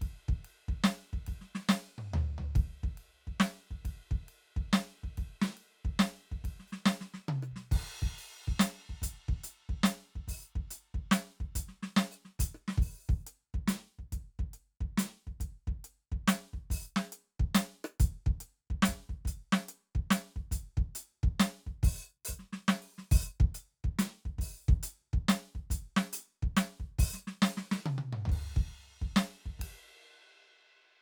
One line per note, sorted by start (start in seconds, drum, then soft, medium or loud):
0.02 kick medium
0.02 ride medium
0.29 kick medium
0.45 ride medium
0.69 kick medium
0.84 snare loud
0.84 ride medium
1.14 kick medium
1.27 kick medium
1.27 ride medium
1.42 snare soft
1.56 snare medium
1.69 snare loud
1.69 hi-hat pedal medium
1.99 mid tom medium
2.14 floor tom loud
2.39 floor tom medium
2.56 kick loud
2.56 ride medium
2.84 kick medium
2.98 ride medium
3.28 kick soft
3.41 snare loud
3.45 ride medium
3.71 kick soft
3.85 kick medium
3.85 ride medium
4.11 kick medium
4.29 ride medium
4.57 kick medium
4.74 snare loud
4.74 ride medium
5.04 kick medium
5.18 kick medium
5.18 ride medium
5.42 snare loud
5.58 ride medium
5.85 kick medium
6.00 snare loud
6.00 ride medium
6.32 kick medium
6.45 kick medium
6.45 ride medium
6.60 snare soft
6.68 hi-hat pedal soft
6.73 snare medium
6.86 snare loud
6.92 hi-hat pedal soft
7.01 snare medium
7.14 snare medium
7.29 high tom loud
7.43 cross-stick soft
7.52 kick soft
7.57 snare medium
7.72 kick loud
7.72 crash medium
8.03 kick medium
8.19 open hi-hat medium
8.48 kick medium
8.59 closed hi-hat loud
8.59 kick soft
8.59 snare loud
8.90 kick soft
9.03 closed hi-hat loud
9.03 kick medium
9.29 kick medium
9.44 closed hi-hat medium
9.70 kick medium
9.84 closed hi-hat loud
9.84 snare loud
10.16 kick soft
10.28 open hi-hat medium
10.28 kick medium
10.56 kick medium
10.71 closed hi-hat medium
10.95 kick medium
11.12 closed hi-hat loud
11.12 snare loud
11.41 kick medium
11.56 closed hi-hat loud
11.56 kick medium
11.69 snare soft
11.83 snare medium
11.97 snare loud
11.97 hi-hat pedal soft
12.12 open hi-hat medium
12.12 hi-hat pedal soft
12.26 snare soft
12.40 closed hi-hat loud
12.40 kick medium
12.55 cross-stick soft
12.69 snare medium
12.78 kick loud
12.83 open hi-hat medium
12.83 snare soft
13.09 kick loud
13.27 closed hi-hat medium
13.55 kick medium
13.68 closed hi-hat loud
13.68 snare loud
13.99 kick soft
14.13 kick medium
14.13 closed hi-hat medium
14.40 kick medium
14.54 closed hi-hat medium
14.81 kick medium
14.98 closed hi-hat loud
14.98 snare loud
15.28 kick soft
15.41 kick medium
15.41 closed hi-hat medium
15.68 kick medium
15.85 closed hi-hat medium
16.12 kick medium
16.28 closed hi-hat loud
16.28 snare loud
16.54 kick soft
16.58 cross-stick soft
16.71 open hi-hat loud
16.71 kick medium
16.97 snare medium
17.13 closed hi-hat medium
17.40 kick medium
17.55 closed hi-hat loud
17.55 snare loud
17.85 cross-stick medium
18.00 closed hi-hat loud
18.00 kick loud
18.27 kick loud
18.41 closed hi-hat medium
18.71 kick medium
18.83 closed hi-hat loud
18.83 snare loud
18.89 kick soft
19.10 kick medium
19.26 closed hi-hat medium
19.26 kick medium
19.53 snare loud
19.69 closed hi-hat medium
19.96 kick medium
20.11 closed hi-hat loud
20.11 snare loud
20.37 kick medium
20.52 closed hi-hat medium
20.52 kick medium
20.78 kick medium
20.96 closed hi-hat loud
21.24 kick loud
21.40 closed hi-hat loud
21.40 snare loud
21.67 kick soft
21.84 open hi-hat loud
21.84 kick loud
22.26 open hi-hat loud
22.26 kick soft
22.26 hi-hat pedal soft
22.40 snare soft
22.53 snare medium
22.69 snare loud
22.83 open hi-hat soft
22.99 snare soft
23.12 open hi-hat loud
23.12 kick loud
23.41 kick loud
23.55 closed hi-hat medium
23.85 kick medium
23.99 closed hi-hat loud
23.99 snare loud
24.26 kick medium
24.39 open hi-hat medium
24.39 kick medium
24.69 kick loud
24.84 closed hi-hat loud
25.14 kick medium
25.29 closed hi-hat loud
25.29 snare loud
25.56 kick soft
25.71 closed hi-hat loud
25.71 kick medium
25.97 snare loud
26.14 closed hi-hat loud
26.43 kick medium
26.57 open hi-hat loud
26.57 snare loud
26.80 kick soft
26.99 open hi-hat loud
26.99 kick loud
27.14 snare soft
27.14 hi-hat pedal soft
27.28 snare medium
27.43 snare loud
27.43 hi-hat pedal medium
27.58 snare medium
27.72 snare loud
27.86 high tom loud
27.99 high tom medium
28.12 kick soft
28.12 mid tom loud
28.26 kick medium
28.26 floor tom loud
28.33 crash medium
28.57 kick loud
29.02 kick medium
29.17 snare loud
29.17 ride medium
29.46 kick soft
29.60 kick medium
29.60 ride loud
30.48 ride soft